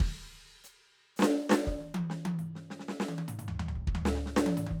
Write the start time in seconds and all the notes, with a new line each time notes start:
0.00 kick, crash
0.64 hi-hat pedal
1.16 snare, hi-hat pedal
1.22 snare
1.50 snare
1.51 snare
1.65 kick, snare
1.80 high tom
1.94 high tom
2.10 snare
2.25 high tom
2.39 mid tom
2.55 snare
2.70 snare
2.79 snare
2.88 snare
3.00 snare
3.08 hi-hat pedal, high tom
3.18 high tom
3.28 mid tom
3.39 mid tom
3.48 floor tom
3.60 floor tom
3.68 floor tom
3.75 kick
3.87 kick
3.95 floor tom
4.05 snare
4.26 snare
4.36 snare
4.46 hi-hat pedal, high tom
4.57 mid tom
4.67 high tom
4.71 kick